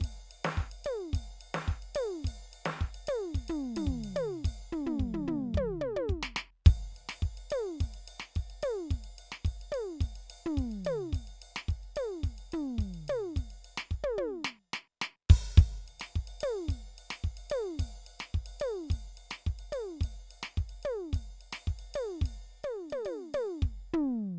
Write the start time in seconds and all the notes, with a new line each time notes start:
0.01 kick, hi-hat pedal, ride
0.31 ride
0.45 snare, ride
0.57 kick, hi-hat pedal
0.72 ride
0.85 high tom, ride
1.13 kick, hi-hat pedal, ride
1.41 ride
1.54 snare, ride
1.67 kick, hi-hat pedal
1.82 ride
1.95 high tom, ride
2.25 kick, hi-hat pedal, ride
2.53 ride
2.66 snare, ride
2.81 kick, hi-hat pedal
2.94 ride
3.07 high tom, ride
3.35 kick, hi-hat pedal, ride
3.48 floor tom, ride
3.76 floor tom, ride
3.87 kick, hi-hat pedal
4.04 ride
4.16 high tom, ride
4.43 kick, hi-hat pedal, ride
4.72 floor tom
4.86 floor tom
5.00 kick, hi-hat pedal
5.13 floor tom
5.27 floor tom
5.54 kick, hi-hat pedal, high tom
5.81 high tom
5.96 high tom
6.08 kick, hi-hat pedal
6.23 snare
6.36 snare
6.65 kick, hi-hat pedal, ride
6.92 kick
6.96 ride
7.09 snare, ride
7.21 kick, hi-hat pedal
7.37 ride
7.51 high tom, ride
7.80 kick, hi-hat pedal, ride
7.94 ride
8.08 ride
8.20 snare
8.34 kick, hi-hat pedal, ride
8.50 ride
8.63 high tom, ride
8.90 kick, hi-hat pedal, ride
9.04 ride
9.18 ride
9.32 snare
9.45 kick, hi-hat pedal, ride
9.61 ride
9.72 high tom, ride
10.01 kick, hi-hat pedal, ride
10.16 ride
10.30 ride
10.45 floor tom
10.57 kick, hi-hat pedal, ride
10.72 ride
10.85 high tom, ride
11.13 kick, hi-hat pedal, ride
11.27 ride
11.42 ride
11.56 snare
11.68 kick, hi-hat pedal, ride
11.83 ride
11.96 high tom, ride
12.24 kick, hi-hat pedal, ride
12.38 ride
12.52 floor tom, ride
12.78 kick, hi-hat pedal, ride
12.94 ride
13.08 high tom, ride
13.36 kick, hi-hat pedal, ride
13.50 ride
13.65 ride
13.78 snare
13.91 kick, hi-hat pedal
14.04 high tom
14.18 high tom
14.45 snare
14.73 snare
15.02 snare
15.29 open hi-hat, kick
15.58 kick, ride
15.88 ride
16.00 snare, ride
16.14 kick, hi-hat pedal
16.27 ride
16.41 high tom, ride
16.68 kick, hi-hat pedal, ride
16.98 ride
17.11 snare, ride
17.24 kick, hi-hat pedal
17.37 ride
17.50 high tom, ride
17.78 kick, hi-hat pedal, ride
18.07 ride
18.20 snare, ride
18.33 kick, hi-hat pedal
18.46 ride
18.60 high tom, ride
18.88 kick, hi-hat pedal, ride
19.17 ride
19.31 snare, ride
19.46 kick, hi-hat pedal
19.59 ride
19.72 high tom, ride
20.01 kick, hi-hat pedal, ride
20.31 ride
20.43 snare, ride
20.57 kick, hi-hat pedal
20.69 ride
20.83 high tom, ride
21.13 kick, hi-hat pedal, ride
21.41 ride
21.53 snare, ride
21.67 kick, hi-hat pedal
21.79 ride
21.94 high tom, ride
22.22 kick, hi-hat pedal
22.26 ride
22.64 high tom, ride bell
22.90 high tom, ride bell
23.05 high tom, ride bell
23.34 high tom, ride bell
23.62 kick
23.93 floor tom